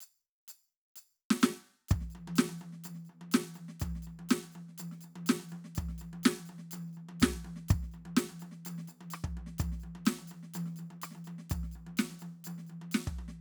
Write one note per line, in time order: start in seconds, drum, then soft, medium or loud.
0.01 percussion medium
0.48 percussion medium
0.96 percussion medium
1.30 snare loud
1.41 snare loud
1.41 percussion medium
1.51 snare soft
1.89 kick loud
1.89 high tom medium
1.89 percussion medium
2.01 snare soft
2.10 percussion soft
2.15 high tom medium
2.27 high tom medium
2.36 snare loud
2.36 percussion medium
2.49 high tom medium
2.58 high tom medium
2.58 percussion soft
2.73 snare soft
2.84 high tom medium
2.84 percussion medium
2.95 snare soft
3.05 percussion soft
3.09 high tom soft
3.21 high tom medium
3.32 snare loud
3.32 percussion medium
3.44 high tom soft
3.54 high tom medium
3.54 percussion soft
3.68 snare soft
3.80 kick medium
3.80 high tom medium
3.80 percussion medium
3.95 snare soft
4.02 percussion soft
4.07 high tom soft
4.19 high tom medium
4.29 snare loud
4.29 percussion medium
4.43 high tom soft
4.52 high tom medium
4.52 percussion soft
4.69 snare soft
4.78 high tom medium
4.78 percussion medium
4.91 snare soft
5.01 high tom soft
5.01 percussion soft
5.16 high tom medium
5.26 snare loud
5.26 percussion medium
5.40 high tom medium
5.49 high tom medium
5.49 percussion soft
5.64 snare soft
5.75 kick medium
5.75 high tom medium
5.75 percussion medium
5.89 snare soft
5.98 high tom medium
5.98 percussion soft
6.13 high tom medium
6.23 snare loud
6.23 percussion medium
6.37 high tom medium
6.46 high tom medium
6.46 percussion soft
6.58 snare soft
6.71 high tom medium
6.71 percussion medium
6.87 snare soft
6.93 percussion soft
6.97 high tom soft
7.09 high tom medium
7.20 kick medium
7.20 snare loud
7.20 percussion medium
7.33 high tom medium
7.45 kick soft
7.45 high tom medium
7.56 snare soft
7.69 kick loud
7.69 high tom medium
7.69 percussion medium
7.83 snare soft
7.92 high tom soft
7.92 percussion soft
8.05 high tom medium
8.17 snare loud
8.17 percussion medium
8.29 high tom medium
8.39 high tom medium
8.39 percussion soft
8.51 snare soft
8.65 high tom medium
8.65 percussion medium
8.78 snare soft
8.88 high tom soft
8.88 percussion soft
9.01 high tom medium
9.10 cross-stick medium
9.10 percussion medium
9.24 kick medium
9.24 high tom medium
9.37 high tom medium
9.46 snare soft
9.58 kick loud
9.58 high tom medium
9.58 percussion medium
9.72 snare soft
9.80 high tom medium
9.80 percussion soft
9.95 high tom medium
10.06 snare loud
10.06 percussion medium
10.19 high tom medium
10.28 high tom medium
10.28 percussion soft
10.43 snare soft
10.54 high tom loud
10.54 percussion medium
10.66 snare soft
10.76 high tom medium
10.76 percussion soft
10.90 high tom medium
11.02 cross-stick medium
11.02 percussion medium
11.11 snare soft
11.15 high tom medium
11.24 high tom medium
11.24 percussion soft
11.38 snare soft
11.50 kick medium
11.50 high tom medium
11.50 percussion medium
11.63 snare soft
11.71 high tom soft
11.71 percussion soft
11.87 high tom medium
11.97 snare loud
11.97 percussion medium
12.10 high tom medium
12.19 high tom medium
12.19 percussion soft
12.44 high tom medium
12.44 percussion medium
12.58 snare soft
12.67 high tom medium
12.67 percussion soft
12.81 high tom medium
12.91 snare medium
12.91 percussion medium
13.06 kick medium
13.06 high tom medium
13.19 high tom medium
13.28 snare soft